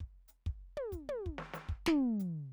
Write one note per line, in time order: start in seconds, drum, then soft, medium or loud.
0.01 kick soft
0.29 hi-hat pedal medium
0.47 kick soft
0.77 high tom medium
0.93 kick soft
0.93 hi-hat pedal medium
1.09 high tom medium
1.27 kick soft
1.39 snare soft
1.54 snare soft
1.54 hi-hat pedal medium
1.69 kick soft
1.87 snare loud
1.87 floor tom loud
2.20 hi-hat pedal medium